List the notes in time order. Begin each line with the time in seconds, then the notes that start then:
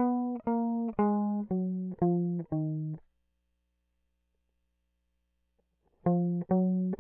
0.00 B3
0.48 A#3
1.00 G#3
1.52 F#3
2.03 F3
2.54 D#3
6.08 F3
6.52 F#3